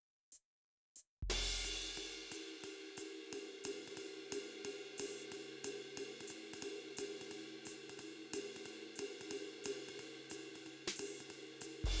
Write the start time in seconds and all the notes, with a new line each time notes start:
0.32 hi-hat pedal
0.96 hi-hat pedal
1.22 kick
1.30 snare, ride
1.64 hi-hat pedal, ride
1.97 ride
2.32 hi-hat pedal, ride
2.64 ride
2.97 hi-hat pedal, ride
3.33 ride
3.64 hi-hat pedal, ride
3.87 ride
3.97 ride
4.32 hi-hat pedal, ride
4.65 ride
4.98 hi-hat pedal, ride
5.32 ride
5.64 hi-hat pedal, ride
5.97 ride
6.20 ride
6.27 hi-hat pedal, ride
6.53 ride
6.62 ride
6.97 hi-hat pedal, ride
7.21 ride
7.31 ride
7.65 hi-hat pedal, ride
7.89 ride
7.99 ride
8.33 hi-hat pedal, ride
8.53 hi-hat pedal, ride
8.65 ride
8.95 hi-hat pedal, ride
9.21 ride
9.31 ride
9.64 hi-hat pedal, ride
9.88 ride
9.99 ride
10.30 hi-hat pedal, ride
10.55 ride
10.66 ride
10.87 snare
10.96 hi-hat pedal, ride
11.20 ride
11.30 ride
11.57 snare
11.61 hi-hat pedal, ride
11.84 kick, ride